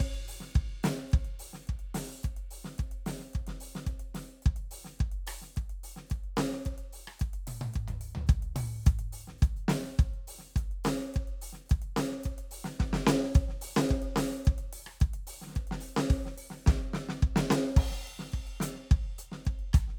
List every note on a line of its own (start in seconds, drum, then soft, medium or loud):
0.01 kick medium
0.01 closed hi-hat soft
0.15 closed hi-hat soft
0.29 open hi-hat medium
0.41 snare soft
0.51 hi-hat pedal soft
0.56 kick loud
0.56 closed hi-hat soft
0.70 closed hi-hat soft
0.84 open hi-hat medium
0.84 snare loud
0.98 snare soft
1.09 closed hi-hat soft
1.09 hi-hat pedal soft
1.14 kick loud
1.25 snare soft
1.25 closed hi-hat soft
1.29 snare soft
1.40 open hi-hat medium
1.54 snare soft
1.64 hi-hat pedal soft
1.68 kick medium
1.68 closed hi-hat soft
1.80 closed hi-hat soft
1.95 open hi-hat medium
1.95 snare medium
2.08 snare soft
2.21 kick medium
2.21 closed hi-hat medium
2.21 hi-hat pedal soft
2.37 closed hi-hat soft
2.52 open hi-hat medium
2.65 snare medium
2.75 closed hi-hat soft
2.75 hi-hat pedal soft
2.80 kick medium
2.92 closed hi-hat soft
3.07 open hi-hat medium
3.07 snare medium
3.12 kick soft
3.20 snare soft
3.30 hi-hat pedal soft
3.34 kick medium
3.34 closed hi-hat soft
3.48 snare soft
3.48 closed hi-hat soft
3.61 open hi-hat medium
3.76 snare medium
3.82 hi-hat pedal soft
3.87 kick medium
3.87 closed hi-hat soft
4.00 closed hi-hat soft
4.15 snare medium
4.15 open hi-hat medium
4.43 kick loud
4.43 hi-hat pedal soft
4.43 open hi-hat soft
4.57 closed hi-hat soft
4.72 open hi-hat medium
4.85 snare soft
4.96 closed hi-hat soft
4.96 hi-hat pedal soft
5.01 kick loud
5.13 closed hi-hat soft
5.28 open hi-hat loud
5.28 cross-stick medium
5.42 snare soft
5.55 kick medium
5.55 closed hi-hat soft
5.55 hi-hat pedal soft
5.70 closed hi-hat soft
5.84 open hi-hat medium
5.97 snare soft
6.07 closed hi-hat medium
6.07 hi-hat pedal soft
6.12 kick medium
6.24 closed hi-hat soft
6.38 open hi-hat medium
6.38 snare loud
6.53 snare soft
6.63 closed hi-hat soft
6.63 hi-hat pedal soft
6.67 kick medium
6.72 snare soft
6.76 snare soft
6.76 closed hi-hat soft
6.93 open hi-hat medium
7.08 cross-stick medium
7.18 kick medium
7.18 closed hi-hat medium
7.18 hi-hat pedal soft
7.34 closed hi-hat soft
7.48 open hi-hat medium
7.48 high tom medium
7.62 high tom loud
7.73 kick medium
7.73 closed hi-hat soft
7.73 hi-hat pedal soft
7.89 closed hi-hat soft
7.89 floor tom medium
8.02 kick soft
8.02 open hi-hat medium
8.16 floor tom loud
8.28 kick loud
8.28 closed hi-hat soft
8.28 hi-hat pedal soft
8.43 closed hi-hat soft
8.57 open hi-hat medium
8.57 high tom loud
8.84 kick loud
8.84 closed hi-hat medium
8.84 hi-hat pedal soft
9.00 closed hi-hat soft
9.13 open hi-hat medium
9.28 snare soft
9.39 hi-hat pedal soft
9.43 kick loud
9.43 closed hi-hat medium
9.57 closed hi-hat soft
9.69 open hi-hat medium
9.69 snare loud
9.84 snare soft
9.87 snare soft
9.97 kick loud
9.97 closed hi-hat soft
9.97 hi-hat pedal soft
10.14 closed hi-hat soft
10.28 open hi-hat medium
10.39 snare soft
10.54 kick loud
10.54 snare soft
10.54 hi-hat pedal soft
10.58 closed hi-hat medium
10.72 closed hi-hat soft
10.85 open hi-hat medium
10.85 snare loud
11.00 snare soft
11.13 closed hi-hat soft
11.13 hi-hat pedal soft
11.17 kick medium
11.28 closed hi-hat soft
11.42 open hi-hat medium
11.53 snare soft
11.66 hi-hat pedal soft
11.70 kick loud
11.70 closed hi-hat medium
11.83 closed hi-hat soft
11.97 open hi-hat medium
11.97 snare medium
12.11 snare soft
12.21 snare soft
12.21 closed hi-hat medium
12.21 hi-hat pedal soft
12.26 kick medium
12.39 closed hi-hat soft
12.52 open hi-hat medium
12.52 kick soft
12.65 snare medium
12.77 kick medium
12.77 snare medium
12.77 hi-hat pedal soft
12.94 snare loud
13.07 kick soft
13.07 snare loud
13.24 snare soft
13.33 kick loud
13.33 closed hi-hat medium
13.33 hi-hat pedal soft
13.49 snare soft
13.62 open hi-hat loud
13.77 snare loud
13.86 hi-hat pedal soft
13.90 kick loud
13.90 closed hi-hat soft
14.03 closed hi-hat soft
14.17 open hi-hat medium
14.17 snare loud
14.31 snare soft
14.41 hi-hat pedal soft
14.46 kick loud
14.46 closed hi-hat medium
14.59 closed hi-hat soft
14.74 open hi-hat medium
14.87 cross-stick medium
14.96 hi-hat pedal soft
15.01 kick loud
15.01 closed hi-hat medium
15.14 closed hi-hat soft
15.28 open hi-hat medium
15.42 snare soft
15.48 snare soft
15.51 snare soft
15.51 hi-hat pedal soft
15.53 snare soft
15.56 kick medium
15.56 snare soft
15.56 closed hi-hat soft
15.68 closed hi-hat soft
15.72 snare medium
15.81 open hi-hat medium
15.81 kick soft
15.97 snare loud
16.11 kick loud
16.11 open hi-hat soft
16.26 snare soft
16.39 open hi-hat medium
16.51 snare soft
16.67 kick loud
16.67 snare medium
16.67 hi-hat pedal soft
16.94 snare medium
17.10 snare medium
17.20 kick loud
17.20 hi-hat pedal soft
17.37 snare loud
17.51 snare loud
17.77 kick loud
17.77 crash loud
17.91 snare soft
18.08 closed hi-hat soft
18.20 snare medium
18.33 kick medium
18.33 closed hi-hat soft
18.48 closed hi-hat soft
18.61 closed hi-hat loud
18.61 snare medium
18.76 snare soft
18.92 kick loud
18.92 closed hi-hat soft
19.04 closed hi-hat soft
19.19 closed hi-hat medium
19.33 snare medium
19.46 kick medium
19.46 closed hi-hat soft
19.60 closed hi-hat soft
19.74 closed hi-hat medium
19.74 kick loud
19.74 cross-stick medium
19.89 snare soft